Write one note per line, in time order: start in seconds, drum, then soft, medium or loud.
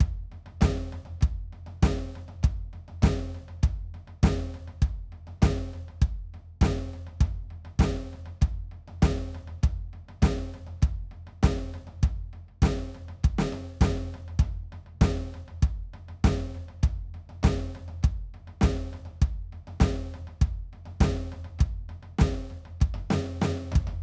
0.01 kick loud
0.01 mid tom medium
0.32 mid tom medium
0.47 mid tom medium
0.61 kick loud
0.61 snare loud
0.61 mid tom loud
0.93 mid tom medium
1.06 mid tom medium
1.22 kick loud
1.22 mid tom medium
1.53 mid tom medium
1.67 mid tom medium
1.83 kick loud
1.83 snare loud
1.83 mid tom loud
2.16 mid tom medium
2.29 mid tom medium
2.44 kick loud
2.44 mid tom medium
2.73 mid tom medium
2.89 mid tom medium
3.03 kick loud
3.03 snare loud
3.03 mid tom loud
3.35 mid tom medium
3.49 mid tom medium
3.64 kick loud
3.64 mid tom medium
3.95 mid tom medium
4.08 mid tom medium
4.24 kick loud
4.24 snare loud
4.24 mid tom loud
4.55 mid tom medium
4.68 mid tom medium
4.82 kick loud
4.82 mid tom medium
5.13 mid tom soft
5.28 mid tom medium
5.42 kick loud
5.42 snare loud
5.42 mid tom loud
5.74 mid tom medium
5.89 mid tom soft
6.02 kick loud
6.02 mid tom medium
6.34 mid tom medium
6.62 kick loud
6.62 snare loud
6.62 mid tom loud
6.94 mid tom medium
7.07 mid tom medium
7.21 kick loud
7.21 mid tom medium
7.51 mid tom soft
7.65 mid tom medium
7.80 kick loud
7.80 snare loud
7.80 mid tom loud
8.13 mid tom medium
8.26 mid tom medium
8.42 kick loud
8.42 mid tom medium
8.72 mid tom soft
8.88 mid tom medium
9.03 kick loud
9.03 snare loud
9.03 mid tom loud
9.35 mid tom medium
9.48 mid tom medium
9.64 kick loud
9.64 mid tom medium
9.94 mid tom soft
10.09 mid tom medium
10.23 kick loud
10.23 snare loud
10.23 mid tom loud
10.54 mid tom medium
10.67 mid tom medium
10.83 kick loud
10.83 mid tom medium
11.12 mid tom soft
11.27 mid tom medium
11.43 kick loud
11.43 snare loud
11.43 mid tom loud
11.74 mid tom medium
11.88 mid tom medium
12.03 kick loud
12.03 mid tom medium
12.34 mid tom soft
12.49 mid tom soft
12.62 kick loud
12.62 snare loud
12.62 mid tom loud
12.95 mid tom medium
13.09 mid tom medium
13.24 kick loud
13.24 mid tom medium
13.39 snare loud
13.53 mid tom medium
13.81 kick loud
13.81 snare loud
13.81 mid tom loud
14.14 mid tom medium
14.28 mid tom medium
14.40 kick loud
14.40 mid tom medium
14.73 mid tom medium
14.87 mid tom soft
15.02 kick loud
15.02 snare loud
15.02 mid tom loud
15.35 mid tom medium
15.48 mid tom medium
15.63 kick loud
15.63 mid tom medium
15.94 mid tom medium
16.09 mid tom medium
16.25 kick loud
16.25 snare loud
16.25 mid tom loud
16.55 mid tom medium
16.69 mid tom soft
16.84 kick loud
16.84 mid tom medium
17.15 mid tom medium
17.30 mid tom medium
17.44 kick loud
17.44 snare loud
17.44 mid tom loud
17.75 mid tom medium
17.89 mid tom medium
18.04 kick loud
18.04 mid tom medium
18.34 mid tom soft
18.48 mid tom medium
18.62 kick loud
18.62 snare loud
18.62 mid tom loud
18.93 mid tom medium
19.06 mid tom medium
19.22 kick loud
19.22 mid tom medium
19.53 mid tom medium
19.68 mid tom medium
19.81 kick loud
19.81 snare loud
19.81 mid tom loud
20.14 mid tom medium
20.28 mid tom medium
20.42 kick loud
20.42 mid tom medium
20.73 mid tom medium
20.86 mid tom medium
21.01 kick loud
21.01 snare loud
21.01 mid tom loud
21.32 mid tom medium
21.45 mid tom medium
21.59 kick loud
21.59 mid tom medium
21.90 mid tom medium
22.03 mid tom medium
22.19 kick loud
22.19 snare loud
22.19 mid tom loud
22.51 mid tom medium
22.66 mid tom medium
22.81 kick loud
22.81 mid tom medium
22.95 mid tom medium
23.11 snare loud
23.11 mid tom loud
23.42 snare loud
23.42 mid tom loud
23.72 kick loud
23.72 mid tom loud
23.88 mid tom medium